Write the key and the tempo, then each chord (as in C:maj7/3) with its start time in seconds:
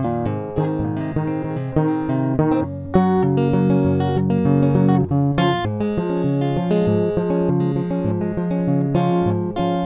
C# major, 100 BPM
0.00 C#:maj/5
0.25 G#:maj(2)
2.65 F#:maj
5.05 C#:maj/5